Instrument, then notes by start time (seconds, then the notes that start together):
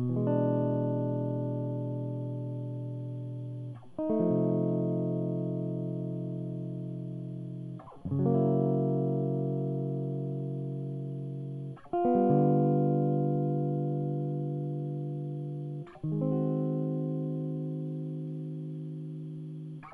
electric guitar
0.00 B2
0.10 E3
0.17 G#3
0.27 D4
3.99 D#4
4.10 A3
4.21 F3
4.25 C3
8.12 C#3
8.20 F#3
8.26 A#3
8.35 E4
11.94 F4
12.05 B3
12.16 G3
12.31 D3
16.05 D#3
16.12 G#3
16.22 C4
16.32 F#4